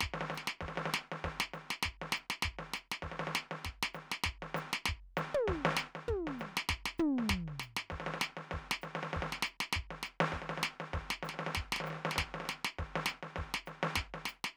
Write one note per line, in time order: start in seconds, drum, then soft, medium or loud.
0.01 kick soft
0.01 snare loud
0.14 snare medium
0.21 snare medium
0.30 snare medium
0.30 hi-hat pedal soft
0.38 snare medium
0.48 snare loud
0.61 kick soft
0.61 snare soft
0.69 snare soft
0.76 snare soft
0.78 snare medium
0.86 snare medium
0.94 snare loud
0.94 hi-hat pedal soft
1.12 snare medium
1.24 kick soft
1.24 snare medium
1.40 snare loud
1.54 snare soft
1.54 hi-hat pedal soft
1.71 snare loud
1.83 kick soft
1.83 snare loud
2.02 snare soft
2.13 snare loud
2.13 hi-hat pedal soft
2.30 snare loud
2.43 kick soft
2.43 snare loud
2.59 snare soft
2.74 snare medium
2.74 hi-hat pedal soft
2.92 snare loud
3.03 kick soft
3.03 snare soft
3.12 snare soft
3.20 snare medium
3.28 snare medium
3.35 snare loud
3.35 hi-hat pedal soft
3.52 snare medium
3.65 kick soft
3.65 snare medium
3.83 snare loud
3.94 snare soft
3.94 hi-hat pedal soft
4.12 snare loud
4.24 kick soft
4.24 snare loud
4.43 snare soft
4.55 snare medium
4.55 hi-hat pedal medium
4.73 snare loud
4.86 kick soft
4.86 snare loud
5.17 snare medium
5.17 hi-hat pedal medium
5.34 high tom loud
5.48 kick soft
5.48 snare medium
5.54 kick soft
5.65 snare loud
5.71 snare medium
5.77 snare loud
5.77 hi-hat pedal medium
5.95 snare soft
6.08 kick soft
6.08 mid tom loud
6.27 snare soft
6.39 snare soft
6.39 hi-hat pedal soft
6.57 snare loud
6.69 kick soft
6.69 snare loud
6.86 snare loud
6.98 floor tom loud
6.98 hi-hat pedal soft
7.19 snare soft
7.30 kick soft
7.30 snare loud
7.48 snare soft
7.60 snare medium
7.60 hi-hat pedal medium
7.77 snare loud
7.91 kick soft
7.91 snare soft
8.00 snare soft
8.07 snare medium
8.14 snare medium
8.22 snare loud
8.22 hi-hat pedal soft
8.37 snare soft
8.52 kick soft
8.52 snare medium
8.71 snare loud
8.82 snare soft
8.82 hi-hat pedal soft
8.95 snare medium
9.03 snare medium
9.14 kick soft
9.14 snare medium
9.23 snare medium
9.33 snare medium
9.43 snare loud
9.43 hi-hat pedal soft
9.61 snare loud
9.73 kick soft
9.73 snare loud
9.91 snare soft
10.03 snare medium
10.03 hi-hat pedal soft
10.21 snare loud
10.32 kick soft
10.32 snare soft
10.42 snare soft
10.50 snare medium
10.58 snare medium
10.63 snare loud
10.63 hi-hat pedal soft
10.80 snare medium
10.94 kick soft
10.94 snare medium
10.99 kick soft
11.11 snare loud
11.23 snare medium
11.23 hi-hat pedal medium
11.29 snare medium
11.34 snare soft
11.39 snare medium
11.47 snare medium
11.55 kick soft
11.55 snare loud
11.73 snare loud
11.77 snare medium
11.81 snare medium
11.84 snare soft
11.84 hi-hat pedal medium
11.88 snare soft
11.91 snare soft
11.93 snare soft
11.96 snare soft
11.99 snare soft
12.05 snare medium
12.11 snare medium
12.16 kick soft
12.16 snare soft
12.18 snare loud
12.34 snare medium
12.41 snare soft
12.46 snare soft
12.49 snare medium
12.49 hi-hat pedal soft
12.65 snare loud
12.79 kick soft
12.79 snare soft
12.96 snare medium
13.06 snare loud
13.06 hi-hat pedal soft
13.23 snare soft
13.36 kick soft
13.36 snare medium
13.54 snare loud
13.66 snare soft
13.66 hi-hat pedal soft
13.83 snare medium
13.96 kick soft
13.96 snare loud
14.14 snare soft
14.26 snare loud
14.26 hi-hat pedal medium
14.45 snare loud